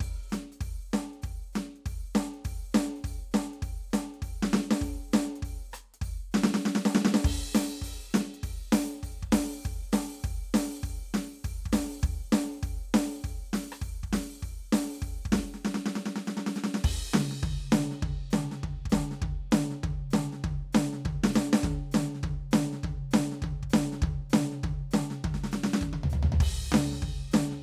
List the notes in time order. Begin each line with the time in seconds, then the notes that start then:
0.01 open hi-hat, kick
0.30 closed hi-hat, snare, hi-hat pedal
0.52 closed hi-hat
0.61 open hi-hat, kick
0.91 closed hi-hat, snare, hi-hat pedal
1.14 closed hi-hat
1.22 open hi-hat, kick
1.53 closed hi-hat, snare, hi-hat pedal
1.76 closed hi-hat
1.86 open hi-hat, kick
2.14 closed hi-hat, snare, hi-hat pedal
2.34 closed hi-hat
2.45 open hi-hat, kick
2.72 closed hi-hat, snare, hi-hat pedal
2.96 open hi-hat
3.04 open hi-hat, kick
3.31 closed hi-hat, snare, hi-hat pedal
3.54 closed hi-hat
3.62 open hi-hat, kick
3.90 closed hi-hat, snare, hi-hat pedal
4.14 closed hi-hat
4.22 open hi-hat, kick
4.43 snare
4.51 snare, hi-hat pedal
4.71 snare
4.82 open hi-hat, kick
5.11 snare, closed hi-hat, hi-hat pedal
5.36 closed hi-hat
5.43 open hi-hat, kick
5.72 closed hi-hat, cross-stick, hi-hat pedal
5.94 closed hi-hat
6.02 open hi-hat, kick
6.32 snare, hi-hat pedal
6.44 snare
6.54 snare
6.60 hi-hat pedal
6.66 snare
6.75 snare
6.85 snare, hi-hat pedal
6.95 snare
7.14 snare
7.25 kick, crash
7.55 open hi-hat, snare
7.62 snare
7.82 open hi-hat, kick
8.11 snare, hi-hat pedal
8.15 closed hi-hat
8.34 closed hi-hat
8.43 open hi-hat, kick
8.72 open hi-hat, snare
8.94 open hi-hat
9.03 open hi-hat, kick
9.23 kick
9.32 open hi-hat, snare
9.53 open hi-hat
9.63 open hi-hat, kick
9.93 open hi-hat, snare
10.13 open hi-hat
10.23 open hi-hat, kick
10.54 open hi-hat, snare
10.75 open hi-hat
10.83 open hi-hat, kick
11.14 open hi-hat, snare
11.34 open hi-hat
11.44 open hi-hat, kick
11.66 kick
11.73 open hi-hat, snare
11.92 open hi-hat
12.02 open hi-hat, kick
12.32 open hi-hat, snare
12.53 open hi-hat
12.63 open hi-hat, kick
12.94 open hi-hat, snare
13.15 open hi-hat
13.24 open hi-hat, kick
13.53 open hi-hat, snare
13.72 open hi-hat, cross-stick
13.82 open hi-hat, kick
14.03 kick
14.13 open hi-hat, snare
14.36 open hi-hat
14.43 open hi-hat, kick
14.73 open hi-hat, snare
14.94 open hi-hat
15.02 open hi-hat, kick
15.26 kick
15.32 open hi-hat, snare
15.54 snare
15.65 snare, hi-hat pedal
15.75 snare
15.86 snare
15.94 snare, hi-hat pedal
16.06 snare
16.16 snare
16.25 snare, hi-hat pedal
16.37 snare
16.47 snare
16.55 snare, hi-hat pedal
16.64 snare
16.74 snare
16.84 kick, crash
17.13 snare, hi-hat pedal, high tom
17.31 snare
17.43 kick, high tom
17.72 snare, hi-hat pedal, high tom
17.91 snare
18.03 kick, high tom
18.31 snare, hi-hat pedal, high tom
18.52 snare
18.63 kick, high tom
18.86 kick
18.90 snare, hi-hat pedal, high tom
19.11 snare
19.22 kick, high tom
19.51 snare, hi-hat pedal, high tom
19.71 snare
19.84 kick, high tom
20.11 snare, hi-hat pedal, high tom
20.33 snare
20.44 kick, high tom
20.73 snare, hi-hat pedal, high tom
20.93 snare
21.05 kick, high tom
21.24 snare
21.31 kick, hi-hat pedal
21.36 snare
21.53 snare
21.63 kick, high tom
21.92 snare, hi-hat pedal, high tom
22.15 snare
22.23 kick, high tom
22.51 snare, hi-hat pedal, high tom
22.73 snare
22.84 kick, high tom
23.11 snare, hi-hat pedal, high tom
23.32 snare
23.42 kick, high tom
23.63 kick
23.70 snare, hi-hat pedal, high tom
23.93 snare
24.02 kick, high tom
24.30 snare, hi-hat pedal, high tom
24.52 snare
24.64 kick, high tom
24.91 snare, hi-hat pedal, high tom
25.11 snare
25.24 kick, high tom
25.34 snare
25.44 snare
25.52 snare, hi-hat pedal
25.64 snare
25.74 snare
25.81 kick, high tom
25.93 high tom
26.04 floor tom
26.10 floor tom, hi-hat pedal
26.23 floor tom
26.32 floor tom
26.41 kick, crash
26.71 snare, hi-hat pedal, high tom
26.92 snare
27.02 kick, high tom
27.32 snare, hi-hat pedal, high tom
27.51 snare